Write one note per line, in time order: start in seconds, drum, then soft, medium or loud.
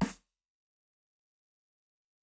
0.01 closed hi-hat medium
0.01 snare loud